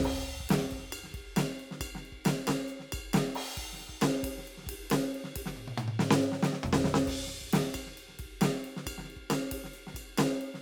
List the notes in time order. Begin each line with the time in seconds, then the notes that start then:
0.01 kick, snare, hi-hat pedal
0.05 crash
0.17 cross-stick
0.27 snare
0.41 kick
0.47 kick, ride
0.51 snare, hi-hat pedal
0.59 snare
0.72 kick, ride
0.79 kick, snare
0.93 hi-hat pedal, ride bell
1.04 snare
1.11 kick, snare
1.15 ride
1.21 kick
1.37 snare, hi-hat pedal, ride bell
1.61 ride
1.72 snare
1.81 kick, hi-hat pedal, ride bell
1.87 kick
1.96 snare
2.06 ride
2.13 kick
2.25 snare, hi-hat pedal, ride bell
2.48 kick, snare, ride bell
2.68 hi-hat pedal, ride
2.80 snare
2.93 kick, ride bell
3.02 kick
3.14 snare, hi-hat pedal, ride bell
3.36 crash
3.58 kick, hi-hat pedal, ride
3.67 kick
3.69 kick
3.74 snare
3.81 snare, ride
3.90 kick
4.02 snare, hi-hat pedal, ride bell
4.24 kick, ride
4.30 kick
4.39 snare
4.45 hi-hat pedal, ride
4.58 snare
4.64 kick, snare
4.70 kick, ride
4.91 snare, hi-hat pedal, ride
5.15 ride
5.25 snare
5.37 kick, hi-hat pedal, ride
5.43 kick, snare
5.57 high tom
5.69 high tom
5.78 hi-hat pedal, high tom
5.89 high tom
6.00 snare
6.12 snare
6.22 hi-hat pedal
6.33 snare
6.44 snare
6.53 snare
6.64 kick, hi-hat pedal, mid tom
6.74 snare
6.84 kick, snare
6.95 snare
7.05 kick, hi-hat pedal, ride
7.14 kick
7.19 cross-stick
7.27 snare
7.42 kick
7.53 snare, hi-hat pedal, ride
7.63 snare
7.75 kick, ride bell
7.81 kick
7.87 snare
7.98 hi-hat pedal, ride
8.09 snare
8.14 snare
8.20 kick, ride
8.26 kick
8.42 snare, hi-hat pedal, ride bell
8.65 ride
8.77 snare
8.87 kick, hi-hat pedal, ride bell
8.93 kick
8.99 snare
9.05 snare
9.11 ride
9.17 kick
9.31 snare, hi-hat pedal, ride bell
9.52 kick, ride
9.65 snare
9.74 hi-hat pedal, ride
9.88 snare
9.95 kick, ride bell
10.01 kick
10.18 snare, hi-hat pedal, ride bell
10.42 ride
10.55 snare